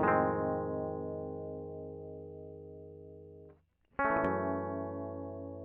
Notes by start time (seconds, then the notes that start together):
0.00 F2 A2 D#3
0.04 G#3
0.09 C4
4.00 C#4
4.06 A3
4.12 E3
4.18 A#2
4.26 F#2